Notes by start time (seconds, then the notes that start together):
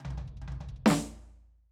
0.00 closed hi-hat, high tom
0.05 floor tom
0.10 high tom
0.17 floor tom
0.27 kick
0.37 kick
0.42 high tom
0.48 floor tom
0.52 high tom
0.61 floor tom
0.69 kick
0.76 kick
0.86 snare
0.90 snare